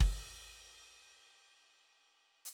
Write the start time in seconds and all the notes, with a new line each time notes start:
0.01 kick, crash
2.46 hi-hat pedal